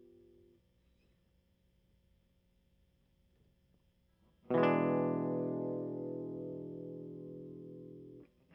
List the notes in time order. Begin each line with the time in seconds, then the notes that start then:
4.52 B2 E3
4.58 G#3
4.63 D4